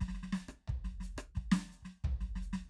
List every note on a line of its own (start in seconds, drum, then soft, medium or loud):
0.01 kick soft
0.01 snare soft
0.09 snare soft
0.15 snare soft
0.23 snare soft
0.33 snare medium
0.33 hi-hat pedal soft
0.48 kick soft
0.48 cross-stick medium
0.68 kick soft
0.68 floor tom medium
0.85 snare soft
1.01 snare soft
1.01 hi-hat pedal soft
1.17 kick soft
1.17 cross-stick medium
1.35 kick soft
1.35 snare soft
1.52 snare loud
1.59 snare soft
1.69 snare soft
1.69 hi-hat pedal soft
1.83 kick soft
1.83 snare soft
2.04 kick soft
2.04 floor tom medium
2.21 snare soft
2.36 snare soft
2.43 hi-hat pedal soft
2.53 kick soft
2.53 snare medium